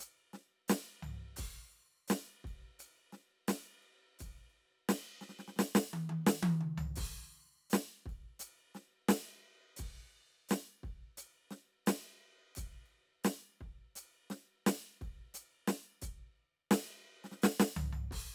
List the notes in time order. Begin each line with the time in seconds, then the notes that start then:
0.01 hi-hat pedal, ride
0.34 snare, ride
0.69 snare, hi-hat pedal, ride
1.03 floor tom, ride
1.37 kick, hi-hat pedal, crash
2.08 snare, hi-hat pedal, ride
2.45 kick, ride
2.80 hi-hat pedal, ride
3.13 snare, ride
3.48 snare, hi-hat pedal, ride
3.83 ride
4.20 kick, hi-hat pedal, ride
4.51 ride
4.90 snare, hi-hat pedal, ride
5.22 snare
5.30 snare
5.40 snare
5.49 snare
5.57 snare
5.60 snare, hi-hat pedal
5.76 snare
5.94 high tom
6.10 high tom
6.27 snare, hi-hat pedal
6.43 high tom
6.61 mid tom
6.78 floor tom
6.96 kick, hi-hat pedal, crash
7.71 snare, hi-hat pedal, ride
8.06 kick, ride
8.40 hi-hat pedal, ride
8.75 snare, ride
9.09 snare, hi-hat pedal, ride
9.77 kick, hi-hat pedal, ride, crash
10.50 snare, hi-hat pedal, ride
10.84 kick, ride
11.18 hi-hat pedal, ride
11.51 snare, ride
11.87 snare, hi-hat pedal, ride
12.22 ride
12.56 kick, hi-hat pedal, ride
12.87 ride
13.25 snare, hi-hat pedal, ride
13.61 kick, ride
13.96 hi-hat pedal, ride
14.31 snare, ride
14.67 snare, hi-hat pedal, ride
15.02 kick, ride
15.35 hi-hat pedal, ride
15.68 snare, ride
16.02 kick, hi-hat pedal, ride
16.37 ride
16.72 snare, hi-hat pedal, ride
17.25 snare
17.32 snare
17.40 snare, hi-hat pedal
17.44 snare
17.60 snare
17.77 floor tom
17.93 floor tom
18.12 kick, crash